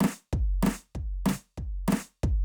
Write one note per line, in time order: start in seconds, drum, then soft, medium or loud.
0.01 snare loud
0.05 snare loud
0.33 kick loud
0.63 snare loud
0.67 snare loud
0.95 kick medium
1.26 snare loud
1.29 snare loud
1.58 kick medium
1.88 snare loud
1.93 snare loud
2.24 kick loud